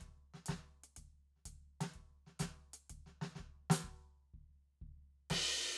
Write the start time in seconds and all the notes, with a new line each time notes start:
0.01 kick, closed hi-hat
0.34 snare
0.46 kick, snare, closed hi-hat
0.84 closed hi-hat
0.96 kick, closed hi-hat
1.36 snare
1.46 kick, closed hi-hat
1.81 snare, closed hi-hat
1.94 kick, closed hi-hat
2.27 snare
2.39 closed hi-hat, kick, snare
2.73 closed hi-hat
2.90 kick, closed hi-hat
3.06 snare
3.22 snare
3.35 snare
3.40 kick
3.70 open hi-hat, snare
3.84 kick
4.34 kick
4.82 kick
5.30 kick, snare, ride